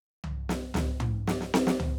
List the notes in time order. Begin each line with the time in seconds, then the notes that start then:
0.24 floor tom
0.49 snare
0.74 snare, floor tom
1.00 mid tom
1.28 snare
1.41 snare
1.54 snare
1.67 snare
1.80 floor tom